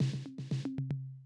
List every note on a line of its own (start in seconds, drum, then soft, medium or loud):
0.00 snare medium
0.14 snare medium
0.26 high tom medium
0.38 snare soft
0.51 snare medium
0.65 high tom loud
0.78 floor tom medium
0.91 floor tom loud